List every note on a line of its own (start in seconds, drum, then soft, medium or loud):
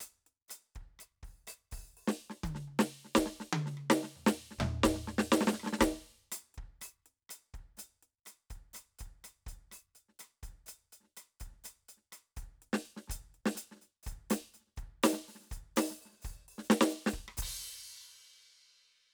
0.01 open hi-hat medium
0.01 cross-stick soft
0.01 hi-hat pedal medium
0.27 closed hi-hat soft
0.49 closed hi-hat medium
0.49 cross-stick soft
0.49 snare soft
0.49 hi-hat pedal soft
0.76 kick soft
0.76 closed hi-hat soft
1.00 open hi-hat medium
1.00 cross-stick soft
1.00 hi-hat pedal soft
1.24 kick soft
1.24 open hi-hat soft
1.48 open hi-hat medium
1.48 cross-stick soft
1.48 hi-hat pedal medium
1.72 open hi-hat medium
1.72 kick soft
1.72 snare soft
1.79 kick soft
1.98 open hi-hat soft
2.08 snare loud
2.20 open hi-hat soft
2.31 snare soft
2.44 kick soft
2.44 hi-hat pedal soft
2.44 high tom medium
2.50 kick soft
2.54 kick soft
2.54 snare soft
2.68 high tom soft
2.80 snare loud
3.05 snare soft
3.14 snare loud
3.14 hi-hat pedal soft
3.18 kick soft
3.27 snare soft
3.41 snare soft
3.53 hi-hat pedal soft
3.53 high tom loud
3.67 snare soft
3.78 cross-stick soft
3.91 snare loud
4.04 snare soft
4.17 floor tom soft
4.27 snare loud
4.52 snare soft
4.59 kick soft
4.59 floor tom loud
4.84 kick soft
4.84 snare loud
4.92 kick soft
4.92 snare soft
5.08 snare soft
5.19 snare loud
5.33 snare loud
5.38 cross-stick soft
5.38 snare medium
5.48 snare loud
5.54 snare medium
5.60 cross-stick soft
5.60 snare soft
5.67 snare medium
5.73 snare medium
5.80 snare soft
5.81 kick medium
5.81 snare loud
5.81 hi-hat pedal medium
6.32 closed hi-hat loud
6.32 cross-stick medium
6.55 kick soft
6.55 closed hi-hat soft
6.82 open hi-hat medium
6.82 cross-stick medium
6.82 snare soft
6.82 hi-hat pedal soft
7.07 closed hi-hat soft
7.30 closed hi-hat medium
7.30 cross-stick soft
7.30 snare soft
7.55 kick soft
7.55 open hi-hat soft
7.78 closed hi-hat medium
7.78 snare soft
7.78 hi-hat pedal soft
8.03 closed hi-hat soft
8.26 closed hi-hat medium
8.26 cross-stick soft
8.26 snare soft
8.26 hi-hat pedal soft
8.51 open hi-hat soft
8.51 kick soft
8.74 closed hi-hat medium
8.74 cross-stick soft
8.74 snare soft
8.74 hi-hat pedal medium
8.99 closed hi-hat soft
8.99 kick soft
9.24 closed hi-hat medium
9.24 cross-stick soft
9.24 snare soft
9.47 closed hi-hat soft
9.47 kick soft
9.72 open hi-hat medium
9.72 cross-stick soft
9.72 snare soft
9.72 hi-hat pedal soft
9.96 closed hi-hat soft
10.09 snare soft
10.20 closed hi-hat medium
10.20 cross-stick soft
10.20 snare soft
10.44 closed hi-hat soft
10.44 kick soft
10.52 snare soft
10.67 closed hi-hat medium
10.67 cross-stick soft
10.67 hi-hat pedal medium
10.93 closed hi-hat soft
11.01 snare soft
11.04 snare soft
11.17 closed hi-hat medium
11.17 cross-stick soft
11.41 closed hi-hat soft
11.41 kick soft
11.49 snare soft
11.53 snare soft
11.65 closed hi-hat medium
11.65 cross-stick soft
11.65 hi-hat pedal medium
11.89 closed hi-hat soft
11.98 snare soft
12.13 closed hi-hat medium
12.13 cross-stick soft
12.13 snare soft
12.37 open hi-hat soft
12.37 kick soft
12.43 kick soft
12.63 closed hi-hat soft
12.74 snare medium
12.86 closed hi-hat soft
12.97 snare soft
13.08 closed hi-hat medium
13.08 kick soft
13.08 snare soft
13.16 kick soft
13.35 closed hi-hat soft
13.46 snare loud
13.56 closed hi-hat medium
13.56 snare soft
13.72 snare soft
13.76 snare soft
13.82 closed hi-hat soft
13.82 snare soft
14.04 kick soft
14.04 snare soft
14.04 hi-hat pedal soft
14.08 closed hi-hat medium
14.13 kick soft
14.16 kick soft
14.31 open hi-hat loud
14.31 snare loud
14.55 closed hi-hat soft
14.55 snare soft
14.59 snare soft
14.61 snare soft
14.68 snare soft
14.77 kick soft
14.77 closed hi-hat soft
14.77 hi-hat pedal soft
15.04 open hi-hat loud
15.04 snare loud
15.14 snare soft
15.29 open hi-hat soft
15.29 snare soft
15.36 snare soft
15.41 snare soft
15.44 snare soft
15.47 snare soft
15.47 hi-hat pedal soft
15.51 closed hi-hat soft
15.51 kick soft
15.51 snare soft
15.58 kick soft
15.77 open hi-hat loud
15.77 snare loud
15.91 snare soft
16.01 open hi-hat soft
16.06 snare soft
16.09 snare soft
16.13 snare soft
16.20 snare soft
16.20 hi-hat pedal soft
16.25 open hi-hat soft
16.25 kick soft
16.49 open hi-hat soft
16.59 snare soft
16.65 hi-hat pedal soft
16.71 snare loud
16.82 snare loud
16.90 hi-hat pedal medium
17.07 snare medium
17.07 hi-hat pedal medium
17.14 kick soft
17.29 cross-stick medium
17.38 kick medium
17.38 cross-stick soft
17.38 hi-hat pedal loud
17.42 kick soft
17.42 crash loud
17.55 hi-hat pedal soft
17.63 cross-stick soft